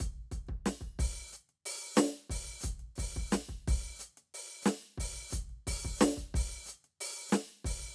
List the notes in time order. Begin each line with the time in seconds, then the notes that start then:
0.00 closed hi-hat, kick
0.31 closed hi-hat, kick
0.47 kick, closed hi-hat
0.66 closed hi-hat, snare
0.81 kick
0.99 open hi-hat, kick
1.33 hi-hat pedal
1.49 closed hi-hat
1.65 open hi-hat
1.95 closed hi-hat, snare, hi-hat pedal
2.29 open hi-hat, kick
2.60 closed hi-hat, kick, hi-hat pedal
2.79 closed hi-hat
2.95 open hi-hat, kick, hi-hat pedal
3.16 kick
3.31 closed hi-hat, snare, hi-hat pedal
3.48 kick, closed hi-hat
3.67 open hi-hat, kick
3.99 closed hi-hat, hi-hat pedal
4.17 closed hi-hat
4.34 open hi-hat
4.62 closed hi-hat, snare, hi-hat pedal
4.82 closed hi-hat
4.98 open hi-hat, kick
5.30 closed hi-hat, kick, hi-hat pedal
5.49 closed hi-hat
5.67 open hi-hat, kick
5.85 kick
5.98 closed hi-hat, snare, hi-hat pedal
6.17 closed hi-hat, kick
6.34 open hi-hat, kick
6.66 closed hi-hat, hi-hat pedal
6.84 closed hi-hat
7.00 open hi-hat
7.29 closed hi-hat, snare, hi-hat pedal
7.48 closed hi-hat
7.64 open hi-hat, kick, hi-hat pedal